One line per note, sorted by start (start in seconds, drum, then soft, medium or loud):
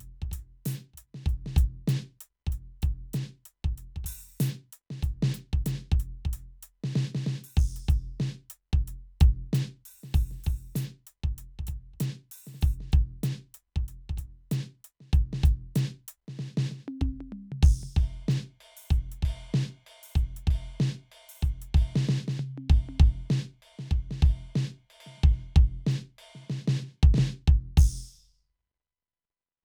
0.01 closed hi-hat medium
0.23 kick soft
0.32 open hi-hat medium
0.32 kick soft
0.66 open hi-hat loud
0.66 snare medium
0.94 closed hi-hat medium
0.94 kick soft
1.15 snare soft
1.27 kick medium
1.27 closed hi-hat soft
1.47 snare medium
1.57 closed hi-hat medium
1.57 kick loud
1.88 closed hi-hat medium
1.88 snare loud
1.99 snare soft
2.21 closed hi-hat medium
2.47 kick medium
2.53 closed hi-hat medium
2.83 closed hi-hat medium
2.83 kick medium
3.14 closed hi-hat medium
3.14 snare medium
3.46 closed hi-hat medium
3.65 kick medium
3.78 closed hi-hat medium
3.97 kick soft
4.05 open hi-hat loud
4.05 kick soft
4.41 open hi-hat loud
4.41 snare loud
4.41 hi-hat pedal soft
4.73 closed hi-hat medium
4.91 snare medium
5.03 kick medium
5.03 open hi-hat soft
5.23 snare loud
5.29 snare soft
5.35 closed hi-hat medium
5.54 kick medium
5.67 closed hi-hat loud
5.67 snare loud
5.75 snare soft
5.92 kick medium
6.01 closed hi-hat medium
6.26 kick medium
6.34 open hi-hat medium
6.63 closed hi-hat medium
6.84 snare medium
6.96 snare loud
7.16 snare medium
7.27 snare medium
7.45 open hi-hat medium
7.58 kick loud
7.58 crash medium
7.77 closed hi-hat medium
7.89 closed hi-hat medium
7.89 kick loud
8.21 snare loud
8.51 closed hi-hat loud
8.74 kick medium
8.88 closed hi-hat medium
9.21 kick loud
9.21 closed hi-hat medium
9.54 closed hi-hat medium
9.54 snare loud
9.86 open hi-hat medium
9.95 open hi-hat soft
10.04 snare soft
10.15 open hi-hat medium
10.15 kick medium
10.32 snare soft
10.44 open hi-hat medium
10.44 kick medium
10.76 open hi-hat medium
10.76 snare loud
10.76 hi-hat pedal soft
11.08 closed hi-hat medium
11.24 kick medium
11.39 closed hi-hat medium
11.60 kick soft
11.68 closed hi-hat medium
11.68 kick soft
11.94 kick soft
12.01 closed hi-hat loud
12.01 snare loud
12.32 open hi-hat medium
12.39 open hi-hat soft
12.48 snare soft
12.55 snare soft
12.62 open hi-hat medium
12.62 kick medium
12.81 snare soft
12.93 closed hi-hat soft
12.93 kick loud
13.24 closed hi-hat medium
13.24 snare loud
13.55 closed hi-hat medium
13.77 kick medium
13.89 closed hi-hat medium
14.10 kick medium
14.18 closed hi-hat medium
14.18 kick soft
14.52 closed hi-hat medium
14.52 snare loud
14.85 closed hi-hat medium
15.01 snare soft
15.14 kick loud
15.14 closed hi-hat soft
15.34 snare medium
15.44 closed hi-hat medium
15.44 kick loud
15.76 closed hi-hat loud
15.76 snare loud
16.09 closed hi-hat loud
16.29 snare medium
16.40 snare medium
16.58 snare loud
16.72 snare soft
16.72 hi-hat pedal soft
16.89 high tom loud
17.02 kick medium
17.02 high tom loud
17.21 high tom medium
17.33 mid tom medium
17.53 floor tom medium
17.63 kick loud
17.63 crash medium
17.84 floor tom medium
17.97 kick medium
17.97 ride bell soft
18.29 snare loud
18.29 hi-hat pedal medium
18.61 ride bell soft
18.78 open hi-hat medium
18.91 kick medium
19.12 closed hi-hat medium
19.23 kick medium
19.23 ride bell medium
19.55 snare loud
19.87 ride bell medium
20.04 open hi-hat medium
20.16 kick medium
20.37 closed hi-hat medium
20.48 kick medium
20.48 ride bell medium
20.81 snare loud
21.12 ride bell medium
21.30 open hi-hat medium
21.43 kick medium
21.48 hi-hat pedal soft
21.62 closed hi-hat medium
21.75 kick loud
21.75 ride bell medium
21.96 snare loud
22.09 snare loud
22.29 snare medium
22.29 hi-hat pedal soft
22.40 floor tom loud
22.58 high tom medium
22.70 kick loud
22.70 ride bell soft
22.89 high tom medium
23.00 kick loud
23.00 ride bell soft
23.31 snare loud
23.63 ride soft
23.80 snare medium
23.92 kick medium
24.12 snare medium
24.23 kick loud
24.23 ride bell soft
24.56 snare loud
24.56 hi-hat pedal soft
24.91 ride bell soft
25.01 ride medium
25.07 snare soft
25.18 snare soft
25.24 kick loud
25.33 snare soft
25.57 kick loud
25.57 ride bell soft
25.87 snare loud
25.87 hi-hat pedal medium
26.19 ride bell medium
26.36 snare soft
26.50 snare medium
26.50 hi-hat pedal soft
26.68 snare loud
26.80 snare soft
27.04 kick loud
27.15 snare loud
27.19 snare loud
27.48 kick loud
27.78 open hi-hat medium
27.78 kick loud
27.78 crash loud
27.87 hi-hat pedal soft